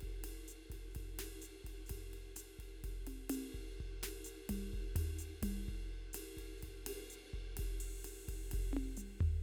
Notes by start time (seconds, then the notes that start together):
0.01 kick, ride
0.08 kick
0.24 snare, ride
0.48 hi-hat pedal, ride
0.70 kick, ride
0.76 kick
0.91 hi-hat pedal
0.95 kick, ride
1.02 kick
1.19 snare, ride
1.42 hi-hat pedal, ride
1.65 kick, ride
1.87 snare, hi-hat pedal, ride
1.91 kick
1.97 kick
2.14 ride
2.36 snare, hi-hat pedal, ride
2.59 kick, ride
2.84 kick, ride
2.90 kick
3.07 high tom, ride
3.30 hi-hat pedal, high tom, ride
3.55 kick
3.60 kick
3.68 snare
3.71 snare
3.81 kick
3.86 kick
4.03 snare, ride
4.25 hi-hat pedal, ride
4.50 kick, mid tom, ride
4.56 kick
4.74 kick, ride
4.79 kick
4.96 floor tom, ride
5.19 hi-hat pedal, ride
5.43 kick, mid tom, ride
5.49 kick
5.63 hi-hat pedal
5.69 kick
5.75 kick
5.79 snare
6.13 snare, hi-hat pedal, ride
6.37 kick, ride
6.58 hi-hat pedal
6.63 kick, ride
6.69 kick
6.87 snare, ride
7.10 hi-hat pedal
7.34 kick
7.39 kick
7.57 kick, ride
7.65 kick
7.81 crash
8.05 hi-hat pedal, ride
8.29 kick, ride
8.34 kick
8.52 kick, ride
8.60 kick
8.73 high tom
8.77 high tom
8.97 hi-hat pedal, mid tom
9.21 kick, floor tom
9.28 kick